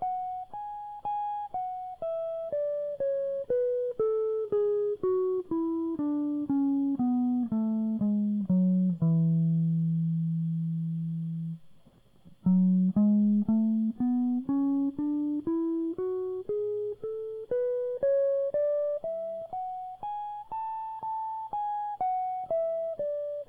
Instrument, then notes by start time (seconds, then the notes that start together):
electric guitar
0.03 F#5
0.54 G#5
1.05 G#5
1.55 F#5
2.02 E5
2.53 D5
3.01 C#5
3.51 B4
4.00 A4
4.53 G#4
5.04 F#4
5.52 E4
6.00 D4
6.50 C#4
7.00 B3
7.53 A3
8.02 G#3
8.51 F#3
9.03 E3
12.47 F#3
12.97 G#3
13.49 A3
14.01 B3
14.50 C#4
14.99 D4
15.47 E4
15.99 F#4
16.50 G#4
17.05 A4
17.52 B4
18.03 C#5
18.54 D5
19.04 E5
19.53 F#5
20.03 G#5
20.52 A5
21.03 A5
21.53 G#5
22.01 F#5
22.51 E5
23.00 D5